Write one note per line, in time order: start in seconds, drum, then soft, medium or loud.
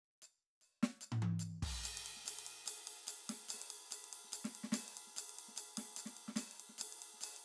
0.22 percussion medium
0.61 percussion soft
0.83 snare medium
1.01 percussion medium
1.12 floor tom medium
1.22 high tom medium
1.39 percussion medium
1.62 kick medium
1.62 crash medium
1.62 ride medium
1.83 ride loud
1.83 percussion medium
1.97 ride medium
2.03 ride medium
2.03 percussion soft
2.16 snare soft
2.24 snare soft
2.24 ride loud
2.24 percussion medium
2.39 ride medium
2.45 ride medium
2.45 percussion soft
2.66 ride loud
2.66 percussion medium
2.86 ride medium
2.86 percussion soft
3.07 ride loud
3.07 percussion medium
3.27 snare soft
3.27 ride loud
3.27 percussion soft
3.49 ride loud
3.49 percussion medium
3.54 snare soft
3.61 ride medium
3.69 ride medium
3.69 percussion soft
3.91 ride loud
3.91 percussion medium
4.04 ride medium
4.10 ride medium
4.10 percussion soft
4.24 snare soft
4.32 ride loud
4.32 percussion medium
4.44 snare soft
4.44 ride medium
4.51 ride medium
4.51 percussion soft
4.63 snare soft
4.72 snare medium
4.72 ride loud
4.72 percussion loud
4.88 ride medium
4.92 percussion soft
4.97 ride medium
5.07 snare soft
5.16 ride loud
5.16 percussion loud
5.29 ride medium
5.35 ride medium
5.35 percussion soft
5.48 snare soft
5.56 ride loud
5.56 percussion medium
5.74 snare soft
5.74 ride loud
5.74 percussion soft
5.96 ride medium
5.96 percussion medium
6.05 snare soft
6.05 ride medium
6.17 ride medium
6.28 snare soft
6.36 snare medium
6.36 ride medium
6.36 percussion medium
6.51 ride medium
6.55 percussion soft
6.59 ride medium
6.69 snare soft
6.78 snare soft
6.78 ride loud
6.78 percussion loud
6.92 ride medium
6.98 ride medium
6.98 percussion soft
7.13 snare soft
7.21 ride loud
7.21 percussion medium
7.36 ride medium